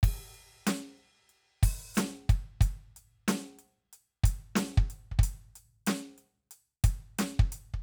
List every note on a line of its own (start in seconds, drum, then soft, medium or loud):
0.03 kick loud
0.03 crash loud
0.34 closed hi-hat soft
0.67 snare loud
0.67 closed hi-hat loud
0.98 closed hi-hat soft
1.29 closed hi-hat soft
1.63 kick loud
1.63 open hi-hat loud
1.94 snare loud
1.94 closed hi-hat loud
1.94 hi-hat pedal loud
2.29 kick loud
2.29 closed hi-hat medium
2.61 kick loud
2.61 closed hi-hat medium
2.96 closed hi-hat medium
3.28 snare loud
3.28 closed hi-hat loud
3.59 closed hi-hat soft
3.93 closed hi-hat medium
4.24 kick loud
4.24 closed hi-hat loud
4.56 snare loud
4.56 closed hi-hat loud
4.77 kick loud
4.90 closed hi-hat medium
5.11 kick soft
5.19 kick loud
5.23 closed hi-hat loud
5.56 closed hi-hat medium
5.87 snare loud
5.87 closed hi-hat loud
6.18 closed hi-hat soft
6.51 closed hi-hat medium
6.84 kick loud
6.84 closed hi-hat loud
7.19 snare loud
7.19 closed hi-hat loud
7.39 kick loud
7.52 closed hi-hat medium
7.74 kick medium